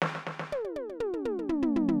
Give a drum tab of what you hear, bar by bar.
Snare     |oooo------------|
High tom  |----oooo--------|
Mid tom   |--------oooo----|
Floor tom |------------oooo|